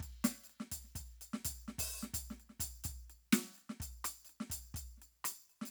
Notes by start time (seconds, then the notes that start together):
0.01 kick, percussion
0.25 snare, percussion
0.45 percussion
0.51 percussion
0.61 snare
0.73 kick, percussion
0.85 snare
0.96 kick, percussion
1.02 kick
1.22 percussion
1.34 snare
1.46 kick, percussion
1.51 kick
1.69 snare
1.79 kick, percussion
1.85 kick
2.02 snare, percussion
2.15 kick, percussion
2.31 snare
2.41 percussion
2.50 snare
2.61 kick, percussion
2.85 kick, percussion
2.92 kick
3.11 percussion
3.34 snare, percussion
3.54 percussion
3.59 percussion
3.70 snare
3.81 kick, percussion
4.05 cross-stick, percussion
4.26 percussion
4.30 percussion
4.41 snare
4.51 kick, percussion
4.75 kick, percussion
4.98 snare
5.03 percussion
5.25 cross-stick, percussion
5.51 percussion
5.62 snare
5.66 percussion